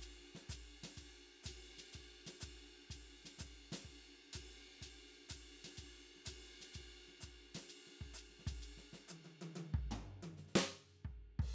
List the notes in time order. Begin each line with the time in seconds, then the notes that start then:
0.01 hi-hat pedal, ride
0.20 snare
0.35 snare
0.50 kick, hi-hat pedal, ride
0.84 snare, ride
0.97 kick, ride
1.44 kick, hi-hat pedal, ride
1.79 snare, ride
1.93 kick, hi-hat pedal, ride
2.27 snare, ride
2.41 kick, hi-hat pedal, ride
2.91 kick, ride
3.25 snare, ride
3.39 kick, snare, hi-hat pedal, ride
3.73 snare, ride
3.85 kick
4.34 kick, hi-hat pedal, ride
4.82 kick, hi-hat pedal, ride
5.15 snare
5.29 kick, hi-hat pedal, ride
5.65 snare, ride
5.78 kick, ride
6.17 snare
6.26 kick, hi-hat pedal, ride
6.61 snare, ride
6.75 kick, ride
7.09 snare
7.21 kick, snare, hi-hat pedal, ride
7.55 snare, ride
7.70 ride
7.88 snare
8.02 kick
8.14 hi-hat pedal, ride
8.30 snare
8.40 snare
8.47 kick, ride
8.58 hi-hat pedal
8.63 ride
8.78 snare
8.94 snare
9.09 hi-hat pedal, high tom
9.25 high tom
9.42 high tom
9.56 high tom
9.75 kick
9.92 floor tom
10.23 high tom
10.38 snare
10.48 snare
10.51 snare
10.56 snare
11.05 kick
11.40 kick, crash